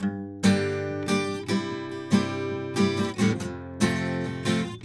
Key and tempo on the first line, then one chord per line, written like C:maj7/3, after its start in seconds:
D minor, 142 BPM
0.00 G:min
1.69 C:7/5
3.38 F:maj